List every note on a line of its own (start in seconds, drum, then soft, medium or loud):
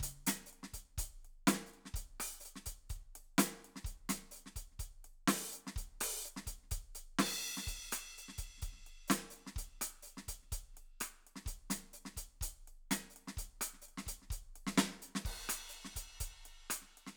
0.01 closed hi-hat medium
0.01 kick soft
0.27 closed hi-hat loud
0.27 snare medium
0.47 hi-hat pedal soft
0.54 closed hi-hat soft
0.64 snare soft
0.74 closed hi-hat medium
0.74 kick soft
0.99 closed hi-hat medium
0.99 kick soft
1.05 kick soft
1.25 closed hi-hat soft
1.48 closed hi-hat loud
1.48 snare loud
1.54 snare soft
1.67 hi-hat pedal soft
1.74 closed hi-hat soft
1.86 snare soft
1.95 closed hi-hat medium
1.95 kick soft
2.21 open hi-hat loud
2.21 cross-stick medium
2.41 hi-hat pedal medium
2.46 closed hi-hat soft
2.56 snare soft
2.67 closed hi-hat medium
2.67 kick soft
2.90 closed hi-hat soft
2.90 kick soft
2.96 kick soft
3.00 snare soft
3.16 closed hi-hat soft
3.39 closed hi-hat loud
3.39 snare loud
3.65 closed hi-hat soft
3.77 snare soft
3.85 closed hi-hat medium
3.85 kick soft
4.10 closed hi-hat loud
4.10 snare medium
4.32 hi-hat pedal medium
4.36 closed hi-hat soft
4.47 snare soft
4.57 closed hi-hat medium
4.57 kick soft
4.72 snare soft
4.80 closed hi-hat medium
4.80 kick soft
5.05 closed hi-hat soft
5.28 open hi-hat loud
5.28 snare loud
5.52 closed hi-hat soft
5.52 hi-hat pedal medium
5.68 snare soft
5.77 closed hi-hat medium
5.77 kick soft
6.01 open hi-hat loud
6.01 cross-stick medium
6.25 open hi-hat soft
6.25 hi-hat pedal medium
6.37 snare soft
6.47 closed hi-hat medium
6.47 kick soft
6.64 snare soft
6.72 closed hi-hat medium
6.72 kick soft
6.78 kick soft
6.96 closed hi-hat medium
7.19 snare medium
7.19 crash loud
7.40 hi-hat pedal soft
7.45 closed hi-hat soft
7.58 snare soft
7.68 closed hi-hat medium
7.68 kick soft
7.93 closed hi-hat loud
7.93 cross-stick medium
8.19 closed hi-hat soft
8.29 snare soft
8.39 closed hi-hat medium
8.39 kick soft
8.59 snare soft
8.63 closed hi-hat medium
8.63 kick soft
8.69 kick soft
8.73 snare soft
8.77 snare soft
8.82 snare soft
8.87 closed hi-hat soft
9.08 closed hi-hat loud
9.08 snare medium
9.08 hi-hat pedal medium
9.31 hi-hat pedal medium
9.37 closed hi-hat soft
9.47 snare soft
9.57 closed hi-hat medium
9.57 kick soft
9.57 snare soft
9.82 closed hi-hat loud
9.82 cross-stick medium
10.03 closed hi-hat soft
10.03 hi-hat pedal medium
10.18 snare soft
10.29 closed hi-hat medium
10.29 kick soft
10.43 snare soft
10.53 closed hi-hat medium
10.53 kick soft
10.74 snare soft
10.74 closed hi-hat soft
11.01 closed hi-hat medium
11.01 cross-stick medium
11.27 closed hi-hat soft
11.37 snare soft
11.46 closed hi-hat medium
11.46 kick soft
11.46 snare soft
11.71 closed hi-hat loud
11.71 snare medium
11.94 closed hi-hat soft
11.94 hi-hat pedal medium
12.06 snare soft
12.16 closed hi-hat medium
12.16 kick soft
12.16 snare soft
12.42 closed hi-hat medium
12.42 kick soft
12.68 closed hi-hat soft
12.92 closed hi-hat loud
12.92 snare medium
13.11 hi-hat pedal soft
13.17 closed hi-hat soft
13.28 snare soft
13.38 closed hi-hat medium
13.38 kick soft
13.62 open hi-hat loud
13.62 cross-stick medium
13.74 snare soft
13.82 hi-hat pedal soft
13.89 closed hi-hat soft
13.98 snare medium
14.06 closed hi-hat medium
14.06 kick soft
14.06 snare soft
14.23 snare soft
14.28 kick soft
14.28 snare soft
14.33 closed hi-hat medium
14.56 closed hi-hat soft
14.67 snare medium
14.78 snare loud
14.92 snare soft
15.03 closed hi-hat soft
15.16 snare medium
15.26 kick soft
15.26 crash medium
15.50 closed hi-hat loud
15.50 cross-stick medium
15.70 hi-hat pedal medium
15.75 closed hi-hat soft
15.85 snare soft
15.97 closed hi-hat medium
15.97 kick soft
16.21 closed hi-hat medium
16.21 kick soft
16.46 closed hi-hat soft
16.71 closed hi-hat loud
16.71 cross-stick medium
16.82 snare soft
16.98 closed hi-hat soft
17.07 snare soft